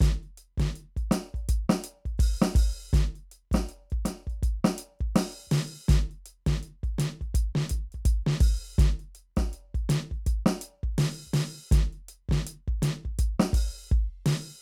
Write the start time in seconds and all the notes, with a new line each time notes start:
0.01 open hi-hat, kick, snare, hi-hat pedal
0.23 closed hi-hat
0.38 closed hi-hat
0.58 kick, snare, closed hi-hat
0.76 closed hi-hat
0.97 kick, closed hi-hat
1.12 closed hi-hat, snare
1.35 kick, closed hi-hat
1.49 closed hi-hat, kick
1.70 snare
1.84 closed hi-hat
2.06 kick, closed hi-hat
2.18 open hi-hat, kick, hi-hat pedal
2.42 snare
2.56 open hi-hat, kick
2.93 open hi-hat, kick, snare, hi-hat pedal
3.16 closed hi-hat
3.32 closed hi-hat
3.52 kick, snare, closed hi-hat
3.69 closed hi-hat
3.91 kick, closed hi-hat
4.06 closed hi-hat, snare
4.27 kick, closed hi-hat
4.43 closed hi-hat, kick
4.65 snare
4.79 closed hi-hat
5.00 kick, closed hi-hat
5.16 open hi-hat, snare
5.48 kick
5.52 open hi-hat, snare
5.89 open hi-hat, kick, snare, hi-hat pedal
6.11 closed hi-hat
6.26 closed hi-hat
6.47 kick, snare, closed hi-hat
6.63 closed hi-hat
6.84 kick, closed hi-hat
6.99 closed hi-hat, snare
7.21 kick, closed hi-hat
7.35 closed hi-hat, kick
7.56 snare
7.70 closed hi-hat, kick
7.93 kick, closed hi-hat
8.06 closed hi-hat, kick
8.13 hi-hat pedal
8.27 snare
8.41 open hi-hat, kick
8.79 closed hi-hat, kick, snare, hi-hat pedal
9.00 closed hi-hat
9.15 closed hi-hat
9.37 kick, snare, closed hi-hat
9.54 closed hi-hat
9.75 kick, closed hi-hat
9.90 closed hi-hat, snare
10.12 kick, closed hi-hat
10.27 closed hi-hat, kick
10.46 snare
10.62 closed hi-hat
10.84 kick
10.99 open hi-hat, snare
11.27 kick
11.34 open hi-hat, snare
11.72 closed hi-hat, kick, snare, hi-hat pedal
11.93 closed hi-hat
12.09 closed hi-hat
12.29 kick, snare, closed hi-hat
12.47 closed hi-hat
12.68 kick
12.83 closed hi-hat, snare
13.05 kick
13.19 closed hi-hat, kick
13.40 snare
13.54 open hi-hat, kick
13.89 kick, hi-hat pedal
13.96 crash, ride
14.26 open hi-hat, snare